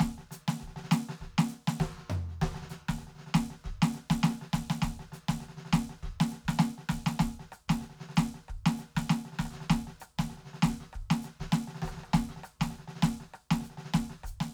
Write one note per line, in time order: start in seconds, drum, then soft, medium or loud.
0.01 kick soft
0.01 snare loud
0.19 snare soft
0.32 kick soft
0.32 snare medium
0.32 hi-hat pedal loud
0.49 snare loud
0.61 kick soft
0.61 snare soft
0.69 snare soft
0.77 snare medium
0.85 snare medium
0.91 kick soft
0.91 snare loud
0.91 hi-hat pedal medium
1.10 snare medium
1.22 kick soft
1.22 snare soft
1.39 snare loud
1.50 snare soft
1.50 hi-hat pedal medium
1.69 snare loud
1.81 kick soft
1.81 snare loud
1.86 kick soft
1.99 snare soft
2.11 floor tom loud
2.11 hi-hat pedal soft
2.30 snare soft
2.43 kick medium
2.43 snare loud
2.50 kick soft
2.55 kick soft
2.55 snare medium
2.63 kick soft
2.63 snare medium
2.71 snare medium
2.71 hi-hat pedal medium
2.90 kick soft
2.90 snare medium
3.00 snare soft
3.08 snare soft
3.16 snare soft
3.20 snare medium
3.28 snare soft
3.35 kick soft
3.35 snare loud
3.35 hi-hat pedal medium
3.52 snare soft
3.66 kick soft
3.66 snare soft
3.73 kick soft
3.76 kick soft
3.83 snare loud
3.94 snare soft
3.94 hi-hat pedal soft
4.11 kick soft
4.11 snare loud
4.24 snare loud
4.29 snare medium
4.43 snare medium
4.54 kick soft
4.54 snare loud
4.54 hi-hat pedal soft
4.71 snare loud
4.83 kick medium
4.83 snare loud
4.91 kick soft
5.01 snare medium
5.13 snare medium
5.13 hi-hat pedal medium
5.30 kick soft
5.30 snare loud
5.42 snare soft
5.50 snare soft
5.57 snare soft
5.57 snare medium
5.66 snare medium
5.74 kick soft
5.74 snare loud
5.74 hi-hat pedal medium
5.91 snare soft
6.04 kick soft
6.04 snare soft
6.10 kick soft
6.13 kick soft
6.21 snare loud
6.30 snare soft
6.30 hi-hat pedal medium
6.46 kick soft
6.46 snare loud
6.60 snare loud
6.79 snare soft
6.90 kick soft
6.90 snare loud
6.90 hi-hat pedal medium
7.07 snare loud
7.21 kick soft
7.21 snare loud
7.28 kick soft
7.41 snare soft
7.53 cross-stick medium
7.53 hi-hat pedal soft
7.70 kick soft
7.70 snare loud
7.82 snare soft
7.91 snare soft
7.97 snare soft
8.01 snare medium
8.10 snare medium
8.17 kick soft
8.17 snare loud
8.17 hi-hat pedal medium
8.35 snare soft
8.50 kick soft
8.50 cross-stick medium
8.59 kick soft
8.67 snare loud
8.79 snare soft
8.79 hi-hat pedal soft
8.96 kick soft
8.96 snare loud
9.11 snare loud
9.26 snare soft
9.34 snare soft
9.40 kick soft
9.40 snare medium
9.40 hi-hat pedal soft
9.47 cross-stick medium
9.52 snare soft
9.55 snare medium
9.62 snare medium
9.71 kick soft
9.71 snare loud
9.77 kick soft
9.88 snare medium
10.01 cross-stick medium
10.01 hi-hat pedal medium
10.19 kick soft
10.19 snare loud
10.31 snare soft
10.39 snare soft
10.46 snare soft
10.47 snare medium
10.55 snare medium
10.64 kick soft
10.64 snare loud
10.64 hi-hat pedal soft
10.68 kick soft
10.68 snare medium
10.82 snare soft
10.94 kick soft
10.94 cross-stick medium
11.03 kick soft
11.12 snare loud
11.23 snare medium
11.23 hi-hat pedal medium
11.41 kick soft
11.41 snare medium
11.54 snare loud
11.69 snare medium
11.76 snare medium
11.83 kick soft
11.83 snare medium
11.87 cross-stick medium
11.87 hi-hat pedal soft
11.92 snare medium
11.98 snare medium
12.05 cross-stick medium
12.09 snare soft
12.15 kick soft
12.15 snare loud
12.21 kick soft
12.30 snare soft
12.38 snare soft
12.45 cross-stick medium
12.45 hi-hat pedal medium
12.61 kick soft
12.61 snare loud
12.72 snare soft
12.80 snare soft
12.89 snare medium
12.97 snare medium
13.04 kick soft
13.04 snare loud
13.04 hi-hat pedal soft
13.08 cross-stick soft
13.21 snare soft
13.35 cross-stick medium
13.52 kick soft
13.52 snare loud
13.62 snare soft
13.62 hi-hat pedal soft
13.71 snare soft
13.79 snare medium
13.86 snare medium
13.95 kick soft
13.95 snare loud
14.11 snare medium
14.25 kick soft
14.25 cross-stick medium
14.25 hi-hat pedal medium
14.34 kick soft
14.42 snare medium